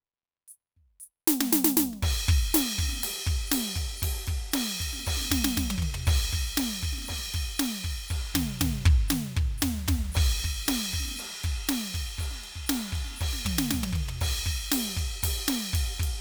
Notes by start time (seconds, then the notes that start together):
0.48 hi-hat pedal
0.76 kick
1.00 hi-hat pedal
1.27 snare
1.40 snare
1.52 snare
1.64 snare
1.77 kick, snare
1.93 snare
2.02 kick, crash
2.28 kick
2.53 snare, hi-hat pedal, crash
2.78 kick, snare, crash
2.86 snare
2.89 snare
2.92 snare
2.94 snare
2.96 snare
2.98 snare, hi-hat pedal
3.02 snare, crash
3.26 kick, crash
3.46 hi-hat pedal
3.51 snare, crash
3.76 kick, crash
3.87 snare
3.90 snare
3.96 snare, hi-hat pedal
4.01 kick, snare, crash
4.27 kick, crash
4.52 snare, hi-hat pedal, crash
4.80 kick, crash
4.93 snare
4.99 snare
5.05 kick, hi-hat pedal, crash
5.17 snare
5.21 snare
5.25 snare
5.31 kick, snare
5.44 snare
5.56 kick, snare, hi-hat pedal
5.70 high tom
5.78 kick
5.82 mid tom
5.94 floor tom
6.05 kick, hi-hat pedal, crash
6.29 kick, crash
6.56 kick, snare, hi-hat pedal, crash
6.82 kick, crash
6.93 snare
6.98 snare
7.02 snare, hi-hat pedal
7.05 snare, crash
7.08 kick, snare
7.11 snare
7.34 kick, crash
7.57 snare, hi-hat pedal, crash
7.84 kick, crash
8.08 kick, hi-hat pedal, crash
8.34 kick, snare, mid tom
8.59 kick, snare, hi-hat pedal, mid tom
8.85 kick, mid tom
9.08 kick, snare, hi-hat pedal, mid tom
9.36 kick, mid tom
9.58 hi-hat pedal
9.62 kick, snare, floor tom
9.88 kick, snare, floor tom
10.12 hi-hat pedal, crash
10.17 kick
10.44 kick
10.65 kick, snare, hi-hat pedal, crash
10.93 kick
11.00 kick, snare
11.05 snare
11.08 snare
11.11 snare
11.14 snare, hi-hat pedal
11.16 snare
11.18 snare, crash
11.43 kick, crash
11.67 snare, hi-hat pedal, crash
11.94 kick, crash
12.18 kick, hi-hat pedal, crash
12.31 snare
12.42 kick, crash
12.56 kick
12.66 snare, hi-hat pedal, crash
12.92 kick, crash
13.04 snare
13.10 snare
13.14 snare, hi-hat pedal
13.21 kick, crash
13.33 snare
13.45 kick, high tom
13.58 snare
13.71 kick, snare, hi-hat pedal
13.83 high tom
13.93 kick, mid tom
14.08 floor tom
14.21 kick, hi-hat pedal, crash
14.44 kick, crash
14.71 snare, hi-hat pedal, crash
14.97 kick, crash
15.17 snare
15.22 kick, hi-hat pedal, crash
15.48 snare, crash
15.73 kick, crash
15.99 kick, crash